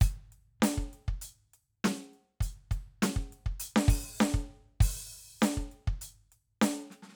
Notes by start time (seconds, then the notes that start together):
0.01 open hi-hat, kick, hi-hat pedal
0.33 closed hi-hat
0.60 closed hi-hat, kick, snare
0.78 kick
0.94 closed hi-hat
1.08 kick
1.22 closed hi-hat
1.54 closed hi-hat
1.85 closed hi-hat, snare
2.14 closed hi-hat
2.41 closed hi-hat, kick
2.71 kick, closed hi-hat
3.03 closed hi-hat, snare
3.17 kick
3.33 closed hi-hat
3.46 kick
3.60 closed hi-hat
3.76 snare
3.89 open hi-hat, kick
4.19 snare, hi-hat pedal
4.34 kick
4.81 open hi-hat, kick
5.36 kick
5.41 closed hi-hat, snare, hi-hat pedal
5.58 kick
5.72 closed hi-hat
5.88 kick
6.02 closed hi-hat
6.32 closed hi-hat
6.62 closed hi-hat, snare
6.91 snare, closed hi-hat
7.03 snare
7.08 snare